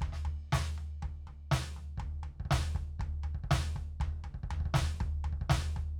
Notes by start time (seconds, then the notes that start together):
0.01 kick, floor tom
0.12 snare
0.25 floor tom
0.53 snare, floor tom
0.78 floor tom
1.02 kick, floor tom
1.27 floor tom
1.51 snare, floor tom
1.76 floor tom
1.98 kick, floor tom
2.23 floor tom
2.40 kick
2.45 kick
2.51 snare, floor tom
2.75 kick, floor tom
3.00 kick, floor tom
3.23 floor tom
3.35 kick
3.44 kick
3.51 snare, floor tom
3.76 kick, floor tom
4.00 kick, floor tom
4.24 floor tom
4.34 kick
4.43 kick
4.51 floor tom
4.60 kick
4.66 kick
4.74 snare, floor tom
5.00 kick, floor tom
5.24 floor tom
5.33 kick
5.41 kick
5.50 snare, floor tom
5.76 kick, floor tom